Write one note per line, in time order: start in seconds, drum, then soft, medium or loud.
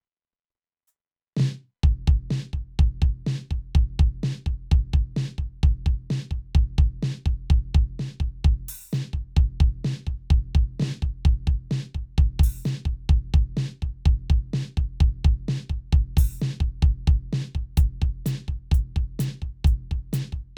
0.89 hi-hat pedal soft
1.38 snare loud
1.41 snare loud
1.85 kick loud
2.09 kick loud
2.32 snare loud
2.48 snare soft
2.54 kick medium
2.80 kick loud
3.03 kick loud
3.28 snare loud
3.35 snare soft
3.44 snare soft
3.52 kick medium
3.76 kick loud
4.01 kick loud
4.25 snare loud
4.41 snare soft
4.47 kick medium
4.73 kick loud
4.95 kick loud
5.18 snare loud
5.39 kick medium
5.64 kick loud
5.87 kick loud
6.12 snare loud
6.28 snare soft
6.32 kick medium
6.56 kick loud
6.80 kick loud
7.04 snare loud
7.20 snare soft
7.27 kick loud
7.51 kick loud
7.76 kick loud
8.01 snare loud
8.18 kick medium
8.18 snare soft
8.46 kick loud
8.70 open hi-hat loud
8.92 snare loud
8.92 hi-hat pedal soft
9.03 snare soft
9.10 snare soft
9.15 kick medium
9.38 kick loud
9.62 kick loud
9.86 snare loud
9.93 snare soft
10.08 kick medium
10.08 snare soft
10.32 kick loud
10.56 kick loud
10.81 snare loud
10.84 snare loud
11.04 kick medium
11.26 kick loud
11.49 kick loud
11.72 snare loud
11.96 kick medium
12.19 kick loud
12.41 kick loud
12.45 open hi-hat loud
12.66 snare loud
12.66 hi-hat pedal soft
12.83 kick medium
12.83 snare soft
13.11 kick loud
13.35 kick loud
13.58 snare loud
13.75 snare soft
13.83 kick medium
14.07 kick loud
14.31 kick loud
14.55 snare loud
14.72 snare soft
14.79 kick medium
15.02 kick loud
15.26 kick loud
15.50 snare loud
15.66 snare soft
15.71 kick medium
15.94 kick loud
16.18 open hi-hat loud
16.18 kick loud
16.40 snare loud
16.40 hi-hat pedal medium
16.62 kick medium
16.84 kick loud
17.09 kick loud
17.34 snare loud
17.43 snare soft
17.56 kick medium
17.79 closed hi-hat loud
17.79 kick loud
18.03 kick loud
18.27 closed hi-hat loud
18.27 snare loud
18.36 snare soft
18.49 kick medium
18.73 closed hi-hat medium
18.73 kick loud
18.97 kick medium
19.21 closed hi-hat loud
19.21 snare loud
19.29 snare soft
19.43 kick medium
19.66 closed hi-hat medium
19.66 kick loud
19.92 kick medium
20.14 closed hi-hat loud
20.14 snare loud
20.34 kick medium